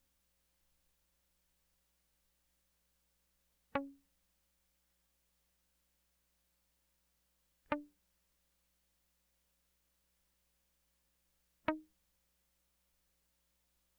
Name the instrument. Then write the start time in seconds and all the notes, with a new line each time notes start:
electric guitar
3.76 C#4
7.73 D4
11.69 D#4